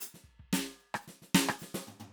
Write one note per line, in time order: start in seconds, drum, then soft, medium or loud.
0.01 closed hi-hat loud
0.15 snare soft
0.24 kick soft
0.40 kick soft
0.53 closed hi-hat loud
0.53 snare medium
0.81 closed hi-hat soft
0.95 cross-stick medium
1.02 hi-hat pedal soft
1.08 snare soft
1.23 snare soft
1.35 snare loud
1.49 cross-stick medium
1.59 snare medium
1.59 hi-hat pedal medium
1.75 snare medium
1.88 floor tom medium
2.00 floor tom medium